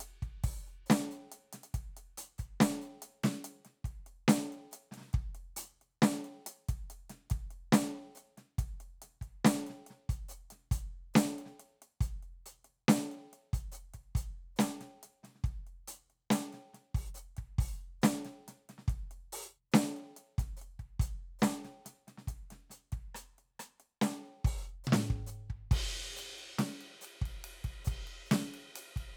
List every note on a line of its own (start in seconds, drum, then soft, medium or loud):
0.01 closed hi-hat medium
0.23 kick soft
0.23 closed hi-hat soft
0.44 kick medium
0.44 open hi-hat medium
0.67 open hi-hat soft
0.87 snare loud
0.87 hi-hat pedal soft
0.91 closed hi-hat medium
1.12 closed hi-hat soft
1.32 closed hi-hat medium
1.53 snare soft
1.53 closed hi-hat medium
1.64 closed hi-hat medium
1.75 kick soft
1.75 closed hi-hat medium
1.97 closed hi-hat medium
2.18 closed hi-hat loud
2.39 closed hi-hat soft
2.39 kick soft
2.61 closed hi-hat medium
2.61 snare loud
2.82 closed hi-hat soft
3.03 closed hi-hat medium
3.24 snare loud
3.24 closed hi-hat medium
3.45 closed hi-hat medium
3.66 snare soft
3.66 closed hi-hat soft
3.85 kick soft
3.85 closed hi-hat soft
4.07 closed hi-hat soft
4.29 open hi-hat loud
4.29 snare loud
4.53 open hi-hat soft
4.72 closed hi-hat medium
4.72 hi-hat pedal soft
4.92 snare soft
4.92 closed hi-hat soft
4.97 snare soft
5.01 snare soft
5.08 snare soft
5.14 kick medium
5.14 snare soft
5.14 closed hi-hat soft
5.35 closed hi-hat soft
5.57 closed hi-hat loud
5.82 closed hi-hat soft
6.03 snare loud
6.03 closed hi-hat medium
6.11 snare soft
6.25 closed hi-hat soft
6.47 closed hi-hat medium
6.69 kick medium
6.69 closed hi-hat medium
6.91 closed hi-hat medium
7.10 snare soft
7.10 closed hi-hat medium
7.31 kick medium
7.31 closed hi-hat medium
7.51 closed hi-hat soft
7.73 closed hi-hat loud
7.73 snare loud
8.16 closed hi-hat soft
8.16 hi-hat pedal medium
8.38 snare soft
8.38 closed hi-hat soft
8.59 kick medium
8.59 closed hi-hat medium
8.81 closed hi-hat soft
9.02 snare soft
9.02 closed hi-hat medium
9.22 kick soft
9.22 closed hi-hat soft
9.45 closed hi-hat loud
9.45 snare loud
9.67 snare soft
9.67 closed hi-hat soft
9.87 snare soft
9.87 closed hi-hat soft
10.10 open hi-hat medium
10.10 kick medium
10.29 closed hi-hat soft
10.29 hi-hat pedal medium
10.51 snare soft
10.51 closed hi-hat medium
10.72 open hi-hat medium
10.72 kick medium
11.15 closed hi-hat loud
11.15 snare loud
11.15 hi-hat pedal medium
11.39 closed hi-hat soft
11.46 snare soft
11.60 closed hi-hat soft
11.83 closed hi-hat soft
12.01 closed hi-hat medium
12.01 kick medium
12.23 closed hi-hat soft
12.47 closed hi-hat medium
12.65 closed hi-hat soft
12.89 closed hi-hat loud
12.89 snare loud
12.96 snare soft
13.12 closed hi-hat soft
13.34 closed hi-hat soft
13.54 open hi-hat medium
13.54 kick medium
13.72 closed hi-hat soft
13.72 hi-hat pedal medium
13.94 kick soft
13.94 closed hi-hat soft
14.16 open hi-hat medium
14.16 kick medium
14.57 closed hi-hat loud
14.57 snare loud
14.57 hi-hat pedal soft
14.81 snare soft
14.81 closed hi-hat soft
15.04 snare soft
15.04 closed hi-hat medium
15.24 snare soft
15.24 closed hi-hat soft
15.28 snare soft
15.36 snare soft
15.38 snare soft
15.44 kick medium
15.44 snare soft
15.44 closed hi-hat soft
15.67 closed hi-hat soft
15.88 closed hi-hat loud
16.11 closed hi-hat soft
16.31 closed hi-hat loud
16.31 snare loud
16.53 snare soft
16.53 closed hi-hat soft
16.74 snare soft
16.74 closed hi-hat soft
16.95 open hi-hat medium
16.95 kick medium
17.15 closed hi-hat soft
17.15 hi-hat pedal medium
17.37 kick soft
17.37 closed hi-hat soft
17.59 open hi-hat medium
17.59 kick medium
17.59 ride soft
18.02 closed hi-hat loud
18.02 snare loud
18.02 hi-hat pedal soft
18.25 snare soft
18.25 closed hi-hat soft
18.48 snare soft
18.48 closed hi-hat medium
18.70 snare soft
18.70 closed hi-hat soft
18.79 snare soft
18.88 kick medium
18.88 closed hi-hat soft
19.12 closed hi-hat soft
19.33 open hi-hat loud
19.72 closed hi-hat medium
19.72 snare loud
19.72 hi-hat pedal soft
19.97 closed hi-hat soft
20.17 closed hi-hat medium
20.39 kick medium
20.39 snare soft
20.39 open hi-hat medium
20.57 hi-hat pedal medium
20.62 closed hi-hat soft
20.80 kick soft
20.80 closed hi-hat soft
21.00 open hi-hat medium
21.00 kick medium
21.40 closed hi-hat medium
21.40 snare loud
21.40 hi-hat pedal soft
21.65 snare soft
21.65 closed hi-hat soft
21.86 snare soft
21.86 closed hi-hat medium
22.08 snare soft
22.08 closed hi-hat soft
22.18 snare soft
22.28 kick soft
22.28 closed hi-hat medium
22.51 snare soft
22.51 closed hi-hat soft
22.70 closed hi-hat medium
22.70 snare soft
22.93 kick soft
22.93 closed hi-hat soft
23.15 closed hi-hat medium
23.15 cross-stick medium
23.39 closed hi-hat soft
23.60 closed hi-hat medium
23.60 cross-stick medium
23.81 closed hi-hat soft
24.02 closed hi-hat medium
24.02 snare medium
24.26 closed hi-hat soft
24.45 open hi-hat medium
24.45 kick medium
24.85 hi-hat pedal medium
24.85 high tom loud
24.93 snare loud
25.11 kick medium
25.27 hi-hat pedal medium
25.51 kick soft
25.72 kick medium
25.72 crash medium
25.72 ride loud
26.17 hi-hat pedal medium
26.17 ride medium
26.39 ride soft
26.59 snare medium
26.59 ride medium
26.82 ride soft
27.02 hi-hat pedal medium
27.02 ride medium
27.22 kick medium
27.26 ride medium
27.45 ride medium
27.65 kick soft
27.65 ride medium
27.85 kick medium
27.85 hi-hat pedal loud
27.85 ride medium
28.08 ride soft
28.26 hi-hat pedal soft
28.32 snare loud
28.32 ride loud
28.55 ride medium
28.76 hi-hat pedal medium
28.76 ride loud
28.97 kick soft
28.97 ride medium